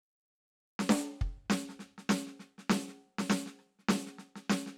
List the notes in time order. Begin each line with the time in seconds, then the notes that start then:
0.79 snare
0.89 snare
1.21 kick
1.46 kick
1.50 snare
1.69 snare
1.79 snare
1.98 snare
2.09 snare
2.27 snare
2.39 snare
2.58 snare
2.69 snare
2.88 snare
3.18 snare
3.30 snare
3.46 snare
3.59 cross-stick
3.79 snare
3.89 snare
4.06 snare
4.18 snare
4.36 snare
4.49 snare
4.66 snare